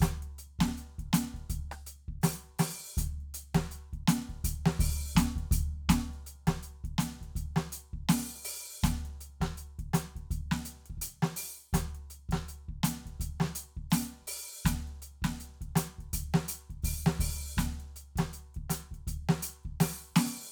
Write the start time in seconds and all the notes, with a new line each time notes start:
0.01 open hi-hat, kick, snare, hi-hat pedal
0.22 closed hi-hat
0.38 closed hi-hat
0.59 kick, snare, closed hi-hat
0.66 snare
0.77 closed hi-hat
0.99 kick, closed hi-hat
1.13 closed hi-hat, snare
1.34 kick, closed hi-hat
1.50 closed hi-hat, kick
1.71 cross-stick, closed hi-hat
1.87 closed hi-hat
2.08 kick
2.22 open hi-hat, snare, hi-hat pedal
2.49 kick
2.59 open hi-hat, snare
2.79 open hi-hat
2.96 closed hi-hat, kick, snare, hi-hat pedal
3.20 closed hi-hat
3.34 closed hi-hat
3.55 kick, snare, closed hi-hat
3.71 closed hi-hat
3.93 kick, closed hi-hat
4.08 closed hi-hat, snare
4.29 kick, closed hi-hat
4.44 closed hi-hat, kick
4.66 snare
4.80 open hi-hat, kick
5.15 closed hi-hat, kick, snare, hi-hat pedal
5.36 kick, closed hi-hat
5.45 kick
5.51 closed hi-hat, kick
5.89 open hi-hat, kick, snare, hi-hat pedal
6.14 closed hi-hat
6.27 closed hi-hat
6.47 kick, snare, closed hi-hat
6.63 closed hi-hat
6.84 kick, closed hi-hat
6.98 closed hi-hat, snare
7.21 kick, closed hi-hat
7.36 closed hi-hat, kick
7.56 snare, closed hi-hat
7.72 closed hi-hat
7.93 kick
8.09 open hi-hat, snare
8.45 open hi-hat
8.83 open hi-hat, kick, snare, hi-hat pedal
9.05 closed hi-hat
9.21 closed hi-hat
9.41 kick, snare, closed hi-hat
9.57 closed hi-hat
9.79 kick, closed hi-hat
9.94 closed hi-hat, snare
10.16 kick, closed hi-hat
10.31 closed hi-hat, kick
10.51 snare
10.65 closed hi-hat
10.86 closed hi-hat
10.90 kick
10.98 closed hi-hat, kick
11.22 snare
11.36 open hi-hat
11.73 closed hi-hat, kick, snare, hi-hat pedal
11.95 closed hi-hat
12.10 closed hi-hat
12.29 kick, snare, closed hi-hat
12.48 closed hi-hat
12.54 snare
12.69 kick
12.83 closed hi-hat, snare
13.06 kick, closed hi-hat
13.20 closed hi-hat, kick
13.40 snare
13.44 snare
13.55 closed hi-hat
13.76 kick, closed hi-hat
13.91 open hi-hat, snare, hi-hat pedal
14.20 kick
14.27 open hi-hat
14.65 open hi-hat, kick, snare, hi-hat pedal
14.87 closed hi-hat
15.02 closed hi-hat
15.22 kick, snare, closed hi-hat
15.40 closed hi-hat
15.61 kick, closed hi-hat
15.76 closed hi-hat, snare
15.99 kick, closed hi-hat
16.13 closed hi-hat, kick
16.34 snare
16.48 closed hi-hat
16.70 kick, closed hi-hat
16.82 open hi-hat, kick, hi-hat pedal
17.06 snare
17.20 open hi-hat, kick
17.57 open hi-hat, kick, snare, hi-hat pedal
17.80 closed hi-hat
17.96 closed hi-hat
18.16 kick, snare, closed hi-hat
18.33 closed hi-hat
18.55 kick, closed hi-hat
18.70 closed hi-hat, snare
18.91 kick, closed hi-hat
19.07 closed hi-hat, kick
19.29 snare
19.43 closed hi-hat
19.64 kick, closed hi-hat
19.80 open hi-hat, snare
20.12 kick
20.16 open hi-hat, snare